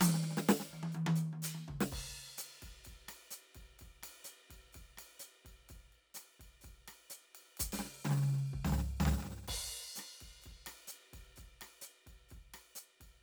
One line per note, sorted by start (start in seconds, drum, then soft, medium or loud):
0.01 hi-hat pedal loud
0.01 high tom loud
0.08 snare medium
0.14 snare soft
0.23 snare soft
0.31 snare soft
0.37 snare medium
0.49 snare loud
0.60 snare soft
0.68 kick soft
0.73 high tom soft
0.83 high tom medium
0.92 hi-hat pedal soft
0.92 high tom medium
1.06 high tom loud
1.16 hi-hat pedal medium
1.33 high tom soft
1.42 closed hi-hat medium
1.42 hi-hat pedal medium
1.55 high tom soft
1.68 kick soft
1.68 mid tom medium
1.74 kick soft
1.81 snare medium
1.92 kick soft
1.92 crash medium
1.98 kick soft
2.38 hi-hat pedal medium
2.38 ride medium
2.62 kick soft
2.62 snare soft
2.62 ride medium
2.84 kick soft
2.84 hi-hat pedal soft
2.84 ride soft
2.92 kick soft
2.92 snare soft
3.08 cross-stick soft
3.08 snare soft
3.08 ride medium
3.31 hi-hat pedal medium
3.31 ride soft
3.55 kick soft
3.55 ride soft
3.79 kick soft
3.79 hi-hat pedal soft
3.79 ride soft
3.86 kick soft
4.03 cross-stick soft
4.03 snare soft
4.03 ride medium
4.24 hi-hat pedal medium
4.29 ride soft
4.50 kick soft
4.50 ride soft
4.73 kick soft
4.73 hi-hat pedal soft
4.73 ride soft
4.80 kick soft
4.98 cross-stick soft
4.98 ride medium
5.19 hi-hat pedal medium
5.19 ride soft
5.45 kick soft
5.45 ride soft
5.69 kick soft
5.69 hi-hat pedal soft
5.69 ride soft
5.75 kick soft
5.92 ride soft
6.14 cross-stick soft
6.14 hi-hat pedal medium
6.14 ride medium
6.40 kick soft
6.40 ride soft
6.61 kick soft
6.61 hi-hat pedal soft
6.61 ride soft
6.69 kick soft
6.88 cross-stick soft
6.88 snare soft
6.88 ride medium
7.10 hi-hat pedal medium
7.10 ride soft
7.35 ride medium
7.57 kick soft
7.57 hi-hat pedal loud
7.57 ride soft
7.66 kick soft
7.72 snare medium
7.72 closed hi-hat medium
7.76 snare medium
7.76 closed hi-hat soft
7.76 mid tom soft
7.85 snare soft
8.05 snare medium
8.05 mid tom loud
8.09 snare medium
8.09 mid tom medium
8.13 snare soft
8.13 mid tom medium
8.17 mid tom soft
8.22 snare soft
8.22 mid tom soft
8.25 snare soft
8.25 mid tom soft
8.29 mid tom soft
8.32 snare soft
8.32 mid tom soft
8.38 snare soft
8.53 kick soft
8.59 kick soft
8.65 snare medium
8.65 floor tom medium
8.69 snare medium
8.69 floor tom medium
8.74 snare soft
8.74 floor tom soft
8.81 floor tom soft
9.00 snare medium
9.00 floor tom loud
9.05 snare medium
9.05 floor tom medium
9.11 snare medium
9.11 floor tom medium
9.17 snare soft
9.17 floor tom soft
9.23 snare soft
9.23 floor tom soft
9.31 snare soft
9.37 snare soft
9.43 snare soft
9.48 kick soft
9.48 crash medium
9.55 kick soft
9.96 cross-stick soft
9.96 snare soft
9.96 hi-hat pedal medium
9.96 ride medium
10.21 kick soft
10.21 ride soft
10.42 hi-hat pedal soft
10.42 ride soft
10.46 kick soft
10.51 kick soft
10.66 cross-stick medium
10.66 snare soft
10.66 ride medium
10.88 hi-hat pedal medium
10.88 ride soft
11.13 kick soft
11.13 ride soft
11.18 kick soft
11.36 kick soft
11.36 hi-hat pedal soft
11.36 ride soft
11.43 kick soft
11.61 cross-stick soft
11.61 snare soft
11.61 ride medium
11.81 hi-hat pedal medium
11.85 ride soft
12.06 kick soft
12.06 ride soft
12.29 kick soft
12.29 hi-hat pedal soft
12.29 ride soft
12.37 kick soft
12.54 cross-stick soft
12.54 ride medium
12.75 hi-hat pedal medium
12.75 ride soft
13.00 kick soft
13.00 ride soft